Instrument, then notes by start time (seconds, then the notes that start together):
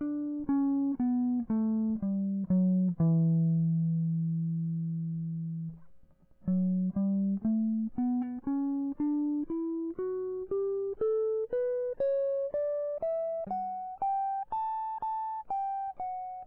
electric guitar
0.02 D4
0.50 C#4
1.00 B3
1.51 A3
2.04 G3
2.52 F#3
3.01 E3
6.49 F#3
6.98 G3
7.46 A3
7.99 B3
8.48 C#4
9.01 D4
9.51 E4
9.99 F#4
10.52 G4
11.02 A4
11.53 B4
12.01 C#5
12.54 D5
13.03 E5
13.51 F#5
14.02 G5
14.53 A5
15.03 A5
15.51 G5
16.00 F#5